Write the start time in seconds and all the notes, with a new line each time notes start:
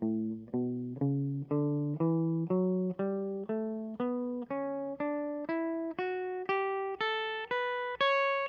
0.05 A2
0.56 B2
1.03 C#3
1.52 D3
2.02 E3
2.51 F#3
3.00 G3
3.50 A3
4.01 B3
4.51 C#4
5.01 D4
5.49 E4
5.99 F#4
6.50 G4
7.01 A4
7.52 B4
8.01 C#5